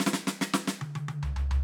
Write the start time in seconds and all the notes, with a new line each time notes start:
0.00 snare
0.06 snare
0.13 snare
0.27 snare
0.41 snare
0.54 snare
0.67 snare
0.81 high tom
0.95 high tom
1.08 high tom
1.23 floor tom
1.36 floor tom
1.51 floor tom